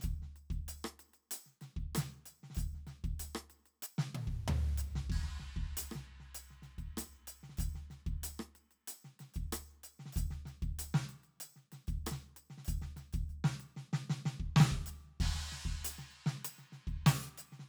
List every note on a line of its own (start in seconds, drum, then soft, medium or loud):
0.01 kick medium
0.01 snare soft
0.01 percussion medium
0.05 percussion soft
0.22 snare soft
0.36 percussion soft
0.51 kick soft
0.51 percussion soft
0.69 percussion medium
0.85 cross-stick medium
1.00 percussion soft
1.14 percussion soft
1.31 percussion loud
1.46 snare soft
1.61 snare soft
1.61 percussion soft
1.77 kick soft
1.77 percussion soft
1.95 cross-stick medium
1.95 snare medium
1.95 percussion loud
2.26 percussion medium
2.44 snare soft
2.50 snare soft
2.55 kick medium
2.55 percussion medium
2.59 percussion medium
2.75 snare soft
2.87 snare soft
2.87 percussion soft
3.04 kick medium
3.04 percussion soft
3.20 percussion medium
3.35 cross-stick medium
3.50 percussion soft
3.66 percussion soft
3.83 percussion loud
3.99 snare medium
4.15 high tom medium
4.27 kick soft
4.48 floor tom loud
4.67 snare soft
4.78 percussion medium
4.96 snare soft
5.10 kick medium
5.10 crash medium
5.23 snare soft
5.40 snare soft
5.57 kick soft
5.77 percussion loud
5.92 cross-stick medium
5.92 snare soft
6.20 snare soft
6.35 percussion medium
6.51 snare soft
6.63 snare soft
6.63 percussion soft
6.79 kick soft
6.79 percussion soft
6.97 cross-stick medium
6.97 percussion loud
7.02 cross-stick soft
7.28 percussion medium
7.43 snare soft
7.50 snare soft
7.58 kick medium
7.58 percussion soft
7.60 percussion medium
7.75 snare soft
7.91 snare soft
7.91 percussion soft
8.07 kick medium
8.07 percussion soft
8.24 percussion loud
8.40 cross-stick medium
8.56 percussion soft
8.71 percussion soft
8.88 percussion loud
9.05 snare soft
9.20 snare soft
9.20 percussion soft
9.34 kick soft
9.34 percussion soft
9.53 cross-stick medium
9.53 percussion loud
9.84 percussion medium
10.00 snare soft
10.06 snare soft
10.13 kick medium
10.13 percussion medium
10.17 percussion medium
10.31 snare soft
10.46 snare soft
10.46 percussion soft
10.62 kick medium
10.62 percussion soft
10.79 percussion loud
10.94 snare medium
11.09 percussion soft
11.24 percussion soft
11.41 percussion medium
11.56 snare soft
11.72 snare soft
11.72 percussion soft
11.88 kick medium
11.88 percussion soft
12.07 cross-stick medium
12.07 percussion medium
12.12 snare soft
12.37 percussion medium
12.50 snare soft
12.58 snare soft
12.65 kick medium
12.65 percussion medium
12.68 percussion medium
12.82 snare soft
12.97 snare soft
12.97 percussion soft
13.13 kick medium
13.13 percussion soft
13.30 percussion soft
13.44 snare medium
13.60 percussion soft
13.77 snare soft
13.93 snare medium
14.10 snare medium
14.26 snare medium
14.40 kick soft
14.56 snare medium
14.60 snare loud
14.72 kick soft
14.86 percussion medium
15.20 kick medium
15.20 crash medium
15.35 snare soft
15.52 snare soft
15.66 kick medium
15.85 percussion loud
15.99 snare soft
16.11 percussion soft
16.26 snare medium
16.45 percussion loud
16.59 snare soft
16.73 snare soft
16.73 percussion soft
16.87 kick soft
16.87 percussion soft
17.07 snare loud
17.07 percussion loud
17.38 percussion medium
17.52 snare soft
17.60 snare soft